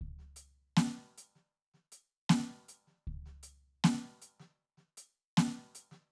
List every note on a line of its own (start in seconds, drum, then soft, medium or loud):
0.02 kick soft
0.19 snare soft
0.37 closed hi-hat medium
0.77 snare loud
1.18 closed hi-hat medium
1.36 snare soft
1.74 snare soft
1.92 closed hi-hat medium
2.30 snare loud
2.69 closed hi-hat medium
2.88 snare soft
2.92 snare soft
3.08 kick soft
3.26 snare soft
3.43 closed hi-hat medium
3.84 snare loud
4.22 closed hi-hat medium
4.40 snare soft
4.78 snare soft
4.98 closed hi-hat medium
5.38 snare loud
5.75 closed hi-hat medium
5.92 snare soft